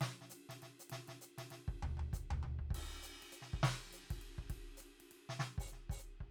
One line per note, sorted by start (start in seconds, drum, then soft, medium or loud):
0.01 snare medium
0.01 ride medium
0.21 snare soft
0.30 hi-hat pedal medium
0.30 ride medium
0.49 snare soft
0.49 ride soft
0.62 snare soft
0.62 ride soft
0.80 hi-hat pedal medium
0.90 snare medium
0.90 ride medium
1.08 snare soft
1.08 ride soft
1.21 hi-hat pedal medium
1.38 snare soft
1.38 ride medium
1.51 snare soft
1.51 ride soft
1.68 kick medium
1.83 floor tom medium
1.83 high tom medium
1.97 floor tom medium
1.97 high tom soft
2.13 kick medium
2.13 hi-hat pedal medium
2.31 floor tom loud
2.31 high tom medium
2.43 floor tom medium
2.43 high tom soft
2.59 kick soft
2.71 kick medium
2.75 ride medium
2.75 crash medium
3.03 hi-hat pedal medium
3.03 ride soft
3.23 ride soft
3.32 hi-hat pedal medium
3.32 ride soft
3.42 snare soft
3.54 kick medium
3.63 snare loud
3.63 crash medium
3.93 hi-hat pedal medium
3.93 ride soft
4.03 snare soft
4.11 kick soft
4.11 ride soft
4.22 ride soft
4.34 kick soft
4.34 snare soft
4.50 kick soft
4.50 ride medium
4.77 hi-hat pedal medium
4.77 ride soft
5.00 ride soft
5.11 ride soft
5.29 snare medium
5.39 snare medium
5.58 open hi-hat medium
5.58 kick medium
5.68 hi-hat pedal medium
5.73 snare soft
5.90 open hi-hat medium
5.90 kick soft
5.99 hi-hat pedal medium
6.04 snare soft
6.21 kick soft